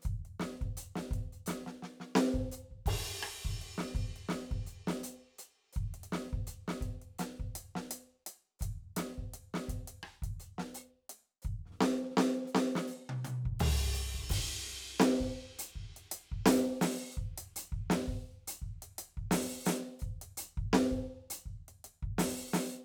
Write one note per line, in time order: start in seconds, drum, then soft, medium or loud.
0.01 snare soft
0.01 hi-hat pedal soft
0.06 kick medium
0.06 closed hi-hat soft
0.26 closed hi-hat soft
0.40 snare medium
0.62 kick medium
0.62 closed hi-hat soft
0.78 closed hi-hat medium
0.96 snare medium
1.11 kick medium
1.11 closed hi-hat soft
1.33 closed hi-hat soft
1.47 closed hi-hat medium
1.47 snare medium
1.67 snare soft
1.83 snare soft
2.01 snare soft
2.16 snare loud
2.35 kick medium
2.52 hi-hat pedal medium
2.72 kick soft
2.87 kick medium
2.87 crash loud
3.23 cross-stick medium
3.46 kick medium
3.46 closed hi-hat soft
3.62 closed hi-hat soft
3.79 snare medium
3.95 kick medium
3.95 closed hi-hat soft
4.17 closed hi-hat soft
4.29 snare medium
4.52 kick medium
4.52 closed hi-hat soft
4.67 closed hi-hat medium
4.88 snare loud
5.04 open hi-hat loud
5.39 open hi-hat medium
5.73 kick medium
5.73 hi-hat pedal medium
5.95 closed hi-hat soft
6.04 closed hi-hat medium
6.13 snare medium
6.33 kick medium
6.48 closed hi-hat medium
6.69 snare medium
6.82 kick soft
6.82 closed hi-hat soft
7.02 closed hi-hat soft
7.19 closed hi-hat medium
7.19 snare medium
7.40 kick soft
7.56 closed hi-hat medium
7.76 snare medium
7.92 open hi-hat loud
8.27 open hi-hat medium
8.60 kick medium
8.60 closed hi-hat medium
8.60 hi-hat pedal soft
8.97 snare medium
8.97 closed hi-hat medium
9.18 kick soft
9.34 closed hi-hat medium
9.55 snare medium
9.69 kick soft
9.69 closed hi-hat medium
9.88 closed hi-hat medium
10.04 cross-stick medium
10.23 kick soft
10.23 closed hi-hat medium
10.40 closed hi-hat medium
10.59 snare medium
10.75 open hi-hat loud
11.10 open hi-hat medium
11.43 kick medium
11.43 hi-hat pedal soft
11.66 snare soft
11.71 snare soft
11.81 snare loud
12.04 snare soft
12.11 snare soft
12.18 snare loud
12.37 snare soft
12.45 snare soft
12.45 hi-hat pedal soft
12.56 snare medium
12.76 snare medium
12.88 hi-hat pedal medium
13.10 high tom medium
13.25 hi-hat pedal medium
13.25 high tom medium
13.46 kick medium
13.60 floor tom loud
13.60 crash loud
13.82 kick soft
13.95 hi-hat pedal medium
14.15 kick soft
14.30 open hi-hat loud
14.30 kick medium
14.30 ride loud
14.99 snare loud
14.99 hi-hat pedal soft
15.21 kick soft
15.60 closed hi-hat loud
15.76 kick soft
15.97 closed hi-hat medium
16.12 closed hi-hat loud
16.32 kick soft
16.46 open hi-hat loud
16.46 snare loud
16.82 open hi-hat loud
16.82 snare loud
17.13 hi-hat pedal soft
17.18 kick medium
17.38 closed hi-hat medium
17.57 closed hi-hat loud
17.73 kick medium
17.91 snare loud
18.08 kick soft
18.48 closed hi-hat loud
18.62 kick soft
18.83 closed hi-hat medium
18.99 closed hi-hat loud
19.18 kick soft
19.32 open hi-hat loud
19.32 snare loud
19.66 open hi-hat loud
19.66 snare loud
20.00 kick soft
20.00 hi-hat pedal soft
20.22 closed hi-hat medium
20.38 closed hi-hat loud
20.58 kick medium
20.74 snare loud
20.92 kick soft
21.31 closed hi-hat loud
21.46 kick soft
21.69 closed hi-hat soft
21.79 kick soft
21.85 closed hi-hat medium
22.03 kick medium
22.19 open hi-hat loud
22.19 snare loud
22.54 open hi-hat loud
22.54 snare loud